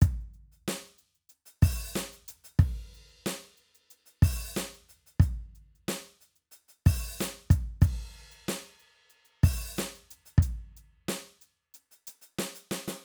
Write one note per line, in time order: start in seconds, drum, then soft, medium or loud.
0.01 kick loud
0.01 closed hi-hat loud
0.21 closed hi-hat soft
0.34 closed hi-hat soft
0.52 closed hi-hat soft
0.68 snare loud
0.84 closed hi-hat soft
0.98 closed hi-hat soft
1.15 closed hi-hat soft
1.29 closed hi-hat medium
1.46 closed hi-hat medium
1.62 open hi-hat loud
1.62 kick loud
1.96 snare loud
1.96 hi-hat pedal loud
2.12 closed hi-hat medium
2.28 closed hi-hat loud
2.44 closed hi-hat medium
2.59 kick loud
2.59 crash loud
2.94 closed hi-hat soft
3.09 closed hi-hat soft
3.26 snare loud
3.43 closed hi-hat soft
3.57 closed hi-hat soft
3.75 closed hi-hat soft
3.90 closed hi-hat medium
4.06 closed hi-hat medium
4.22 open hi-hat loud
4.22 kick loud
4.57 snare loud
4.57 hi-hat pedal loud
4.74 closed hi-hat soft
4.89 closed hi-hat medium
5.06 closed hi-hat soft
5.20 closed hi-hat medium
5.20 kick loud
5.55 closed hi-hat soft
5.75 closed hi-hat soft
5.88 snare loud
6.04 closed hi-hat soft
6.21 closed hi-hat soft
6.36 closed hi-hat soft
6.51 closed hi-hat medium
6.68 closed hi-hat soft
6.86 open hi-hat loud
6.86 kick loud
7.20 closed hi-hat loud
7.20 snare loud
7.20 hi-hat pedal loud
7.50 kick loud
7.50 closed hi-hat loud
7.81 kick loud
7.81 hi-hat pedal loud
7.81 crash medium
8.17 closed hi-hat soft
8.32 closed hi-hat medium
8.48 snare loud
8.64 closed hi-hat soft
8.80 closed hi-hat soft
8.96 closed hi-hat soft
9.10 closed hi-hat soft
9.25 closed hi-hat soft
9.43 open hi-hat loud
9.43 kick loud
9.77 snare loud
9.77 hi-hat pedal loud
9.95 closed hi-hat soft
10.11 closed hi-hat medium
10.25 closed hi-hat medium
10.38 kick loud
10.42 closed hi-hat loud
10.77 closed hi-hat medium
11.09 snare loud
11.41 closed hi-hat medium
11.74 closed hi-hat medium
11.91 closed hi-hat medium
12.07 closed hi-hat loud
12.21 closed hi-hat medium
12.39 snare loud
12.54 closed hi-hat medium
12.71 snare loud
12.88 snare loud